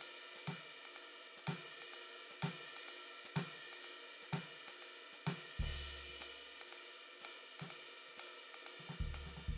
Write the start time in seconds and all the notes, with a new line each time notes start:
0.01 ride
0.35 hi-hat pedal
0.47 snare, ride
0.85 ride
0.89 hi-hat pedal
0.96 ride
1.37 hi-hat pedal
1.47 snare, ride
1.79 snare, ride
1.84 hi-hat pedal
1.93 ride
2.30 hi-hat pedal
2.42 snare, ride
2.76 hi-hat pedal, ride
2.88 ride
3.25 hi-hat pedal
3.36 snare, ride
3.73 hi-hat pedal, ride
3.84 ride
4.22 hi-hat pedal
4.33 snare, ride
4.67 hi-hat pedal, ride
4.82 ride
5.12 hi-hat pedal
5.26 snare, ride
5.59 kick, ride
6.08 snare
6.20 hi-hat pedal, ride
6.61 ride
6.67 hi-hat pedal
6.72 ride
7.21 hi-hat pedal, ride
7.43 hi-hat pedal
7.59 snare, ride
7.68 hi-hat pedal, ride
8.07 snare
8.17 hi-hat pedal, ride
8.54 ride
8.59 hi-hat pedal
8.66 ride
8.79 snare
8.89 snare
9.00 kick
9.13 hi-hat pedal, ride
9.26 snare
9.36 snare
9.48 kick